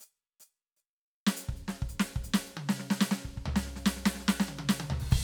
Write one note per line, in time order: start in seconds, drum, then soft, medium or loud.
0.00 hi-hat pedal medium
0.40 hi-hat pedal medium
0.50 closed hi-hat soft
0.76 hi-hat pedal soft
1.27 snare loud
1.37 closed hi-hat loud
1.48 kick medium
1.56 closed hi-hat soft
1.68 snare medium
1.82 kick medium
1.89 closed hi-hat medium
1.99 snare loud
2.16 kick medium
2.24 closed hi-hat medium
2.34 snare loud
2.46 closed hi-hat soft
2.57 high tom loud
2.69 snare loud
2.79 snare medium
2.90 snare loud
3.01 snare loud
3.11 snare loud
3.25 kick soft
3.37 kick soft
3.46 floor tom loud
3.56 snare loud
3.66 snare soft
3.76 snare medium
3.86 snare loud
3.96 snare soft
4.05 snare loud
4.15 snare medium
4.20 snare medium
4.24 snare soft
4.28 snare loud
4.40 snare loud
4.48 high tom medium
4.59 high tom loud
4.69 snare loud
4.80 high tom loud
4.90 floor tom loud
5.00 kick soft
5.00 crash medium
5.11 kick loud
5.11 crash loud